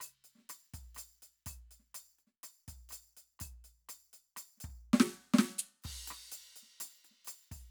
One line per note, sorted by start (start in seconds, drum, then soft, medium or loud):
0.01 cross-stick soft
0.01 percussion medium
0.25 percussion soft
0.36 snare soft
0.37 snare soft
0.50 cross-stick soft
0.50 percussion medium
0.74 kick soft
0.74 percussion soft
0.95 cross-stick soft
0.95 percussion soft
0.99 percussion medium
1.23 percussion soft
1.47 kick soft
1.47 cross-stick soft
1.47 percussion medium
1.72 percussion soft
1.80 snare soft
1.95 cross-stick soft
1.95 percussion medium
2.19 percussion soft
2.28 snare soft
2.44 cross-stick soft
2.44 percussion medium
2.69 kick soft
2.69 percussion soft
2.90 cross-stick soft
2.90 percussion medium
2.93 percussion medium
3.17 percussion soft
3.40 kick soft
3.40 cross-stick soft
3.40 percussion medium
3.65 percussion soft
3.90 cross-stick soft
3.90 percussion medium
4.14 percussion soft
4.36 cross-stick soft
4.36 snare soft
4.36 percussion medium
4.58 snare soft
4.58 percussion medium
4.65 kick soft
4.70 kick soft
4.94 snare loud
5.01 snare loud
5.34 snare loud
5.39 snare loud
5.59 floor tom loud
5.83 kick soft
5.83 percussion soft
5.83 crash medium
6.08 cross-stick medium
6.08 percussion medium
6.12 cross-stick soft
6.32 percussion medium
6.56 percussion soft
6.63 snare soft
6.81 cross-stick soft
6.81 percussion loud
7.05 percussion soft
7.11 snare soft
7.26 percussion soft
7.28 cross-stick soft
7.28 percussion medium
7.52 kick soft
7.52 percussion soft